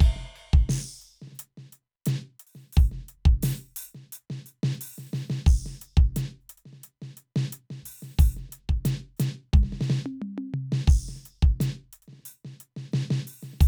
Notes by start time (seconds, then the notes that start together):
0.01 kick, ride
0.16 snare
0.36 ride
0.54 kick
0.70 snare, crash
1.02 closed hi-hat
1.22 snare
1.28 snare
1.32 snare, hi-hat pedal
1.39 closed hi-hat
1.58 snare
1.73 closed hi-hat
2.06 closed hi-hat, snare
2.40 closed hi-hat
2.47 open hi-hat
2.55 snare
2.73 open hi-hat
2.77 kick
2.85 hi-hat pedal
2.92 snare
3.09 closed hi-hat
3.26 kick
3.43 open hi-hat, snare
3.77 open hi-hat
3.84 hi-hat pedal
3.95 snare
4.13 open hi-hat, hi-hat pedal
4.30 snare
4.46 hi-hat pedal, open hi-hat
4.64 snare
4.74 hi-hat pedal
4.81 open hi-hat
4.98 snare
5.14 snare
5.30 snare
5.47 kick, crash
5.66 snare, hi-hat pedal
5.82 closed hi-hat
5.97 kick
6.16 closed hi-hat, snare
6.41 hi-hat pedal
6.50 closed hi-hat
6.58 closed hi-hat
6.66 snare
6.73 snare
6.84 closed hi-hat
7.02 snare
7.17 closed hi-hat
7.36 snare
7.53 closed hi-hat
7.71 snare
7.83 open hi-hat, kick
8.03 snare
8.19 open hi-hat, kick
8.32 hi-hat pedal
8.37 snare
8.50 closed hi-hat, snare
8.69 kick
8.86 closed hi-hat, snare
9.17 closed hi-hat, snare, hi-hat pedal
9.54 kick, hi-hat pedal, mid tom
9.64 snare
9.73 snare
9.81 snare, hi-hat pedal
9.90 snare
10.06 high tom
10.22 mid tom
10.38 high tom
10.54 floor tom
10.73 snare
10.88 kick, crash
11.09 snare
11.16 snare
11.26 closed hi-hat
11.43 kick
11.61 closed hi-hat, snare
11.93 closed hi-hat
12.03 closed hi-hat
12.08 snare
12.13 snare
12.20 snare
12.25 open hi-hat, hi-hat pedal
12.45 snare
12.61 closed hi-hat
12.77 snare
12.92 snare, hi-hat pedal
13.11 snare
13.28 open hi-hat
13.43 snare
13.54 snare
13.61 open hi-hat, kick